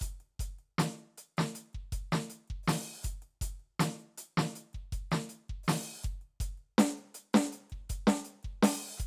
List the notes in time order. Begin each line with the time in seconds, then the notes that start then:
0.01 closed hi-hat, kick, hi-hat pedal
0.21 closed hi-hat
0.40 closed hi-hat, kick
0.59 closed hi-hat
0.79 closed hi-hat, snare
1.00 closed hi-hat
1.18 closed hi-hat
1.38 closed hi-hat, snare
1.56 closed hi-hat
1.74 kick, closed hi-hat
1.93 closed hi-hat, kick
2.13 closed hi-hat, snare
2.30 closed hi-hat
2.48 kick, closed hi-hat
2.64 hi-hat pedal
2.68 open hi-hat, snare
3.03 closed hi-hat, kick, hi-hat pedal
3.23 closed hi-hat
3.42 closed hi-hat, kick
3.60 closed hi-hat
3.80 closed hi-hat, snare
3.99 closed hi-hat
4.18 closed hi-hat
4.38 snare, closed hi-hat
4.56 closed hi-hat
4.74 kick, closed hi-hat
4.93 closed hi-hat, kick
5.12 closed hi-hat, snare
5.30 closed hi-hat
5.49 kick, closed hi-hat
5.64 hi-hat pedal
5.69 open hi-hat, snare
6.04 kick, closed hi-hat, hi-hat pedal
6.22 closed hi-hat
6.41 closed hi-hat, kick
6.58 closed hi-hat
6.79 closed hi-hat, snare
6.98 closed hi-hat
7.15 closed hi-hat
7.34 closed hi-hat, snare
7.53 closed hi-hat
7.70 kick, closed hi-hat
7.90 closed hi-hat, kick
8.08 snare, closed hi-hat
8.25 closed hi-hat
8.44 kick, closed hi-hat
8.63 open hi-hat, snare
8.98 closed hi-hat, kick, cross-stick, hi-hat pedal